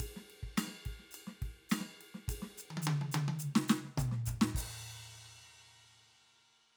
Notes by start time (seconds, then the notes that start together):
0.01 kick, hi-hat pedal, ride
0.06 kick
0.17 snare
0.31 ride
0.44 kick
0.58 snare, hi-hat pedal, ride bell
0.68 snare
0.87 kick, ride
0.93 kick
1.00 snare
1.12 hi-hat pedal, ride bell
1.28 snare
1.37 snare
1.43 kick, ride
1.49 kick
1.52 kick
1.70 snare, hi-hat pedal, ride bell
1.82 snare
2.02 ride
2.15 snare
2.29 kick, hi-hat pedal, ride
2.35 kick
2.39 kick
2.43 snare
2.47 kick
2.59 hi-hat pedal
2.72 high tom
2.78 high tom
2.83 hi-hat pedal
2.88 high tom
3.02 high tom
3.13 hi-hat pedal, high tom
3.29 high tom
3.40 hi-hat pedal
3.57 snare
3.69 snare, hi-hat pedal
3.85 snare
3.99 kick, hi-hat pedal, mid tom
4.05 kick
4.13 snare
4.27 kick, hi-hat pedal, floor tom
4.34 kick
4.42 snare
4.56 kick, hi-hat pedal, crash
4.64 kick